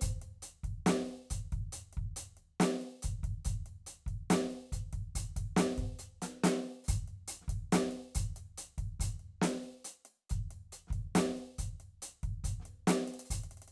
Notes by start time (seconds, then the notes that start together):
0.01 closed hi-hat, kick
0.22 closed hi-hat
0.42 closed hi-hat
0.63 kick, closed hi-hat
0.86 closed hi-hat, snare
1.05 closed hi-hat
1.30 closed hi-hat, kick
1.52 kick, closed hi-hat
1.72 closed hi-hat
1.93 closed hi-hat
1.97 kick
2.16 closed hi-hat
2.37 closed hi-hat
2.60 closed hi-hat, snare
2.81 closed hi-hat
3.02 closed hi-hat, kick
3.23 kick, closed hi-hat
3.45 closed hi-hat, kick
3.66 closed hi-hat
3.86 closed hi-hat
4.06 kick, closed hi-hat
4.30 closed hi-hat, snare
4.51 closed hi-hat
4.72 closed hi-hat, kick
4.93 kick, closed hi-hat
5.15 closed hi-hat, kick
5.36 kick, closed hi-hat
5.57 closed hi-hat, snare
5.78 kick, closed hi-hat
5.99 closed hi-hat
6.22 closed hi-hat, snare
6.44 closed hi-hat, snare
6.84 hi-hat pedal
6.88 closed hi-hat, kick
7.08 closed hi-hat
7.28 closed hi-hat
7.41 snare
7.48 kick, closed hi-hat
7.72 closed hi-hat, snare
7.91 closed hi-hat
8.15 closed hi-hat, kick
8.36 closed hi-hat
8.58 closed hi-hat
8.78 kick, closed hi-hat
9.00 closed hi-hat, kick
9.05 snare
9.19 closed hi-hat
9.42 closed hi-hat, snare
9.63 closed hi-hat
9.84 closed hi-hat
10.05 closed hi-hat
10.30 closed hi-hat, kick
10.51 closed hi-hat
10.72 closed hi-hat
10.87 kick, snare
10.93 closed hi-hat
11.15 closed hi-hat, snare
11.37 closed hi-hat
11.58 closed hi-hat, kick
11.80 closed hi-hat
12.02 closed hi-hat
12.23 kick, closed hi-hat
12.44 closed hi-hat, kick
12.60 snare
12.65 closed hi-hat
12.87 closed hi-hat, snare
13.08 closed hi-hat
13.14 closed hi-hat
13.19 closed hi-hat
13.25 closed hi-hat
13.30 closed hi-hat, kick
13.43 closed hi-hat
13.51 closed hi-hat
13.57 closed hi-hat
13.62 closed hi-hat
13.68 closed hi-hat